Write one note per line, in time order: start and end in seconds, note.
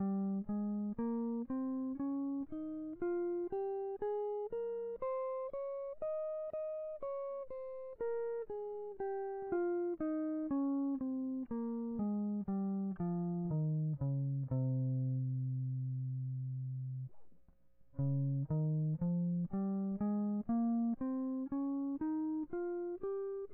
0.02 0.45 G3
0.50 0.97 G#3
1.00 1.46 A#3
1.51 2.00 C4
2.00 2.46 C#4
2.52 3.02 D#4
3.03 3.51 F4
3.53 3.99 G4
4.03 4.50 G#4
4.53 4.99 A#4
5.03 5.53 C5
5.54 5.99 C#5
6.03 6.53 D#5
6.54 7.01 D#5
7.03 7.49 C#5
8.01 8.46 A#4
8.50 9.00 G#4
9.01 9.59 G4
9.53 9.97 F4
10.01 10.52 D#4
10.52 11.00 C#4
11.02 11.48 C4
11.52 12.06 A#3
12.00 12.45 G#3
12.49 12.96 G3
13.02 13.55 F3
13.52 13.97 D#3
14.03 14.49 C#3
14.53 17.11 C3
18.00 18.47 C#3
18.52 18.99 D#3
19.03 19.50 F3
19.54 20.01 G3
20.02 20.46 G#3
20.50 20.98 A#3
21.02 21.50 C4
21.53 22.00 C#4
22.02 22.48 D#4
22.54 23.00 F4
23.04 23.49 G4